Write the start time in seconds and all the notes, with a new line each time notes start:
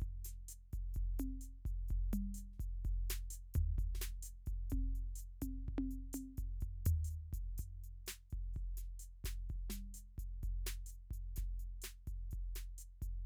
0.01 kick, closed hi-hat
0.25 open hi-hat, snare
0.49 hi-hat pedal
0.74 kick, closed hi-hat
0.95 kick, closed hi-hat
1.20 closed hi-hat, high tom
1.42 closed hi-hat, hi-hat pedal
1.66 kick, closed hi-hat
1.72 kick
1.89 kick, closed hi-hat
2.14 closed hi-hat, mid tom
2.35 closed hi-hat, hi-hat pedal
2.54 snare
2.60 closed hi-hat, kick
2.85 kick, closed hi-hat
3.11 closed hi-hat, snare
3.31 closed hi-hat, hi-hat pedal
3.55 kick, closed hi-hat, floor tom
3.79 kick, closed hi-hat
3.96 snare
4.02 closed hi-hat, snare
4.23 closed hi-hat, hi-hat pedal
4.47 kick, closed hi-hat
4.54 kick
4.71 kick, closed hi-hat, high tom
4.96 closed hi-hat
5.16 closed hi-hat, hi-hat pedal
5.42 kick, closed hi-hat, high tom
5.69 kick
5.79 high tom
5.92 closed hi-hat
6.14 hi-hat pedal, open hi-hat, high tom
6.38 kick, closed hi-hat
6.45 kick
6.61 kick, closed hi-hat
6.86 closed hi-hat, floor tom
7.05 hi-hat pedal
7.11 closed hi-hat
7.34 closed hi-hat, kick
7.59 open hi-hat, kick
7.84 closed hi-hat
8.07 open hi-hat, snare, hi-hat pedal
8.31 closed hi-hat, kick
8.55 open hi-hat, kick
8.78 closed hi-hat, snare
9.00 closed hi-hat, hi-hat pedal
9.25 closed hi-hat, kick, snare
9.50 closed hi-hat, kick
9.56 kick
9.70 closed hi-hat, snare, mid tom
9.95 closed hi-hat, hi-hat pedal
10.19 closed hi-hat, kick
10.44 closed hi-hat, kick
10.67 closed hi-hat, snare
10.87 hi-hat pedal
10.92 closed hi-hat
11.12 closed hi-hat, kick
11.37 closed hi-hat, kick, snare
11.44 kick
11.60 closed hi-hat
11.82 closed hi-hat, snare, hi-hat pedal
12.08 closed hi-hat, kick
12.32 closed hi-hat, kick
12.56 closed hi-hat, snare
12.79 hi-hat pedal
13.03 closed hi-hat, kick